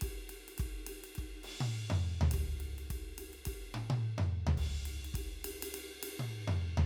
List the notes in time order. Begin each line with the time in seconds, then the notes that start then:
0.01 kick, ride
0.29 ride
0.48 ride
0.59 kick
0.86 ride
1.04 ride
1.15 kick, ride
1.43 ride
1.60 high tom
1.90 mid tom
2.21 floor tom
2.31 kick, ride
2.60 ride
2.78 ride
2.90 kick, ride
3.18 ride
3.33 ride
3.45 kick, ride
3.74 high tom
3.90 high tom
4.18 mid tom
4.46 floor tom
4.57 kick, ride
4.85 ride
5.04 ride
5.14 kick, ride
5.44 ride
5.62 ride
5.74 ride
6.03 ride
6.19 high tom
6.47 mid tom
6.77 floor tom